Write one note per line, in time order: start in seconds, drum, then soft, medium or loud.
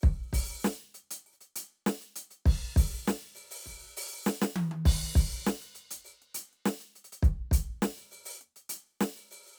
0.01 open hi-hat soft
0.01 kick loud
0.33 open hi-hat loud
0.33 kick loud
0.52 open hi-hat soft
0.65 snare loud
0.75 closed hi-hat soft
0.75 hi-hat pedal soft
0.95 closed hi-hat medium
1.11 closed hi-hat loud
1.27 open hi-hat soft
1.33 hi-hat pedal soft
1.41 closed hi-hat soft
1.56 closed hi-hat loud
1.72 closed hi-hat soft
1.87 snare loud
2.01 closed hi-hat soft
2.16 closed hi-hat loud
2.31 closed hi-hat soft
2.46 kick loud
2.46 crash medium
2.62 open hi-hat soft
2.76 open hi-hat loud
2.76 kick loud
2.94 open hi-hat soft
3.08 snare loud
3.22 open hi-hat soft
3.35 open hi-hat medium
3.51 open hi-hat loud
3.66 open hi-hat medium
3.66 kick soft
3.74 kick soft
3.83 open hi-hat soft
3.97 open hi-hat loud
4.12 open hi-hat soft
4.27 snare loud
4.42 snare loud
4.56 high tom loud
4.71 high tom medium
4.86 kick loud
4.86 crash loud
5.00 open hi-hat soft
5.16 open hi-hat loud
5.16 kick loud
5.32 open hi-hat soft
5.46 snare loud
5.46 hi-hat pedal soft
5.62 closed hi-hat soft
5.75 closed hi-hat medium
5.91 closed hi-hat loud
5.91 kick soft
6.05 open hi-hat medium
6.10 hi-hat pedal soft
6.22 closed hi-hat soft
6.35 closed hi-hat loud
6.53 closed hi-hat soft
6.66 snare loud
6.80 closed hi-hat soft
6.96 closed hi-hat soft
7.04 closed hi-hat medium
7.12 closed hi-hat medium
7.23 open hi-hat medium
7.23 kick loud
7.23 hi-hat pedal soft
7.52 closed hi-hat loud
7.52 kick loud
7.67 open hi-hat soft
7.82 snare loud
7.96 open hi-hat medium
8.12 open hi-hat medium
8.26 open hi-hat loud
8.35 hi-hat pedal soft
8.41 closed hi-hat soft
8.56 closed hi-hat medium
8.70 closed hi-hat loud
8.87 open hi-hat soft
9.01 snare loud
9.16 open hi-hat soft
9.31 open hi-hat medium
9.46 open hi-hat soft